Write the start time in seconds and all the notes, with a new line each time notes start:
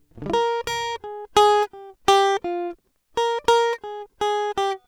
0.28 G3
0.35 A#4
0.68 A#4
1.05 G#4
1.38 G#4
1.64 G4
2.09 G4
2.46 F4
3.18 A#4
3.49 A#4
3.85 G#4
4.22 G#4
4.59 G4